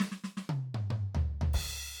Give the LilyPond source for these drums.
\new DrumStaff \drummode { \time 4/4 \tempo 4 = 120 sn16 sn16 sn16 sn16 tommh8 toml16 toml16 r16 tomfh8 tomfh16 <cymc bd>4 | }